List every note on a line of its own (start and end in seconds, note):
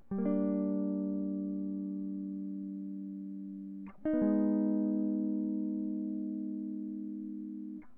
0.12 3.94 G3
0.19 3.49 A#3
0.26 3.90 D4
4.06 7.84 D#4
4.14 7.86 B3
4.23 7.83 G#3